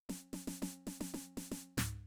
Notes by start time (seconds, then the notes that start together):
0.09 snare, high tom
0.33 snare, high tom
0.47 snare, high tom
0.62 snare, high tom
0.87 snare, high tom
1.01 snare, high tom
1.14 snare, high tom
1.37 snare, high tom
1.52 snare, high tom
1.77 snare, floor tom